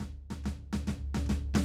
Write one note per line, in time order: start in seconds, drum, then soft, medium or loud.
0.03 kick soft
0.03 snare soft
0.03 floor tom medium
0.30 snare medium
0.30 floor tom medium
0.44 kick soft
0.44 snare medium
0.44 floor tom medium
0.73 snare medium
0.73 floor tom medium
0.87 kick soft
0.87 snare medium
0.87 floor tom medium
1.14 snare medium
1.14 floor tom medium
1.26 kick soft
1.26 snare medium
1.26 floor tom medium
1.54 snare loud
1.54 floor tom loud